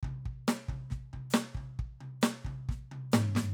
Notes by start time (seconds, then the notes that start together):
0.03 kick, mid tom
0.26 kick, mid tom
0.47 snare, hi-hat pedal
0.68 kick, mid tom
0.90 kick, snare
1.13 kick, mid tom
1.30 snare, hi-hat pedal
1.55 kick, mid tom
1.79 kick
2.01 mid tom
2.21 snare, hi-hat pedal
2.45 kick, mid tom
2.69 kick, snare
2.91 mid tom
3.12 snare, floor tom, hi-hat pedal
3.35 snare, floor tom